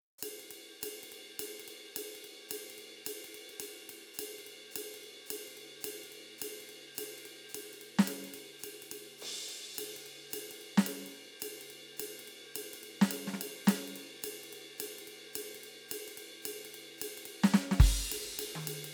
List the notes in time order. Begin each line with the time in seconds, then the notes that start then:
0.18 hi-hat pedal
0.23 ride
0.39 ride
0.51 ride
0.81 hi-hat pedal, ride
1.03 ride
1.12 ride
1.39 hi-hat pedal, ride
1.60 ride
1.68 ride
1.95 hi-hat pedal, ride
2.15 ride
2.24 ride
2.49 hi-hat pedal, ride
2.70 ride
2.78 ride
3.05 hi-hat pedal, ride
3.24 ride
3.34 ride
3.49 ride
3.60 hi-hat pedal, ride
3.89 ride
4.14 hi-hat pedal
4.19 ride
4.38 ride
4.47 ride
4.71 hi-hat pedal
4.76 ride
4.94 ride
5.03 ride
5.26 hi-hat pedal
5.30 ride
5.47 ride
5.57 ride
5.81 hi-hat pedal, ride
6.03 ride
6.12 ride
6.38 hi-hat pedal, ride
6.60 ride
6.69 ride
6.95 hi-hat pedal, ride
7.18 ride
7.25 ride
7.49 hi-hat pedal
7.55 ride
7.73 ride
7.81 ride
7.99 snare, hi-hat pedal
8.07 ride
8.24 ride
8.34 ride
8.59 hi-hat pedal
8.64 ride
8.82 ride
8.91 ride
9.18 hi-hat pedal, ride
9.41 ride
9.49 ride
9.74 hi-hat pedal, ride
9.96 ride
10.06 ride
10.30 hi-hat pedal, ride
10.51 ride
10.61 ride
10.77 snare, hi-hat pedal
10.86 ride
11.06 ride
11.15 ride
11.39 hi-hat pedal, ride
11.61 ride
11.70 ride
11.97 hi-hat pedal, ride
12.19 ride
12.28 ride
12.54 hi-hat pedal, ride
12.73 ride
12.83 ride
13.01 snare, hi-hat pedal
13.11 ride
13.27 snare
13.33 snare
13.41 ride
13.64 snare, hi-hat pedal
13.68 ride
13.88 ride
13.96 ride
14.22 hi-hat pedal, ride
14.43 ride
14.53 ride
14.78 hi-hat pedal, ride
14.98 ride
15.07 ride
15.33 hi-hat pedal, ride
15.55 ride
15.63 ride
15.88 hi-hat pedal, ride
16.08 ride
16.17 ride
16.42 hi-hat pedal, ride
16.65 ride
16.74 ride
16.98 hi-hat pedal, ride
17.18 ride
17.25 ride
17.42 snare, hi-hat pedal
17.54 snare
17.71 snare
17.80 kick, crash
18.04 hi-hat pedal
18.12 ride
18.39 ride
18.55 high tom
18.60 hi-hat pedal
18.67 ride
18.84 ride